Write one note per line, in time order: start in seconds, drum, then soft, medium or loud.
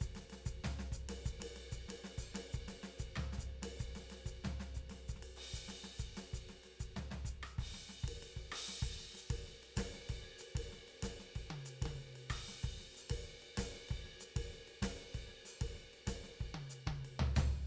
0.01 kick soft
0.01 hi-hat pedal medium
0.16 snare soft
0.16 ride medium
0.30 snare soft
0.30 ride medium
0.46 kick soft
0.46 hi-hat pedal medium
0.64 snare medium
0.64 floor tom medium
0.79 snare soft
0.92 kick soft
0.92 hi-hat pedal medium
1.09 snare soft
1.09 ride loud
1.26 kick soft
1.26 hi-hat pedal medium
1.40 snare soft
1.40 ride loud
1.56 snare soft
1.56 ride medium
1.72 kick soft
1.72 hi-hat pedal medium
1.89 snare soft
1.89 ride medium
2.04 snare soft
2.04 ride medium
2.18 kick soft
2.18 hi-hat pedal medium
2.35 snare medium
2.35 ride loud
2.53 kick soft
2.53 hi-hat pedal medium
2.68 snare soft
2.68 ride medium
2.84 snare soft
2.84 ride medium
2.99 kick soft
2.99 hi-hat pedal medium
3.16 cross-stick medium
3.16 floor tom medium
3.33 snare soft
3.39 kick soft
3.39 hi-hat pedal medium
3.63 snare soft
3.63 ride loud
3.80 kick soft
3.80 hi-hat pedal medium
3.96 snare soft
3.96 ride medium
4.11 snare soft
4.11 ride medium
4.26 kick soft
4.26 hi-hat pedal medium
4.44 snare soft
4.44 floor tom medium
4.60 snare soft
4.75 kick soft
4.75 hi-hat pedal medium
4.90 snare soft
4.90 ride medium
5.09 kick soft
5.09 hi-hat pedal medium
5.16 snare soft
5.23 ride medium
5.37 ride medium
5.54 kick soft
5.54 hi-hat pedal medium
5.69 snare soft
5.69 ride medium
5.84 snare soft
5.84 ride medium
5.99 kick soft
5.99 hi-hat pedal medium
6.17 snare soft
6.17 ride medium
6.34 kick soft
6.34 hi-hat pedal medium
6.49 snare soft
6.49 ride medium
6.64 snare soft
6.64 ride medium
6.80 kick soft
6.80 hi-hat pedal medium
6.97 snare soft
6.97 floor tom medium
7.11 snare soft
7.11 floor tom medium
7.25 kick soft
7.25 hi-hat pedal medium
7.43 cross-stick medium
7.59 kick soft
7.59 ride medium
7.74 snare soft
7.89 snare soft
8.04 kick soft
8.08 ride medium
8.23 ride medium
8.37 kick soft
8.52 cross-stick medium
8.52 ride loud
8.69 snare soft
8.83 kick soft
8.83 ride medium
8.99 snare soft
9.14 snare soft
9.14 hi-hat pedal medium
9.14 ride medium
9.31 kick soft
9.31 ride loud
9.47 snare soft
9.64 ride medium
9.77 kick soft
9.77 snare medium
9.77 hi-hat pedal medium
9.77 ride loud
9.94 snare soft
10.10 kick soft
10.10 ride medium
10.23 snare soft
10.39 hi-hat pedal medium
10.39 ride medium
10.56 kick soft
10.56 ride loud
10.72 snare soft
10.88 ride medium
11.03 kick soft
11.03 snare medium
11.03 hi-hat pedal medium
11.03 ride loud
11.20 snare soft
11.36 kick soft
11.36 ride medium
11.51 high tom medium
11.66 hi-hat pedal medium
11.66 ride medium
11.82 kick soft
11.82 high tom medium
11.82 ride loud
11.87 closed hi-hat soft
12.16 ride medium
12.30 kick soft
12.30 cross-stick medium
12.30 hi-hat pedal medium
12.30 ride medium
12.48 snare soft
12.64 kick soft
12.64 ride medium
12.80 snare soft
12.95 hi-hat pedal medium
12.95 ride soft
13.10 kick soft
13.10 ride loud
13.43 ride soft
13.58 kick soft
13.58 snare medium
13.58 hi-hat pedal medium
13.58 ride loud
13.75 snare soft
13.89 kick soft
13.89 ride medium
14.06 snare soft
14.21 snare soft
14.21 hi-hat pedal medium
14.21 ride medium
14.36 kick soft
14.36 ride loud
14.53 snare soft
14.68 ride medium
14.82 kick soft
14.82 snare medium
14.82 hi-hat pedal medium
14.82 ride loud
15.02 snare soft
15.15 kick soft
15.15 ride medium
15.29 snare soft
15.45 snare soft
15.45 hi-hat pedal medium
15.45 ride medium
15.62 kick soft
15.62 ride loud
15.76 snare soft
15.94 ride soft
16.07 kick soft
16.07 snare medium
16.07 hi-hat pedal medium
16.07 ride loud
16.24 snare soft
16.41 kick soft
16.41 ride soft
16.55 high tom medium
16.70 hi-hat pedal medium
16.70 ride soft
16.87 kick soft
16.87 closed hi-hat soft
16.87 high tom loud
17.05 ride medium
17.20 floor tom loud
17.36 kick soft
17.36 floor tom loud
17.36 hi-hat pedal medium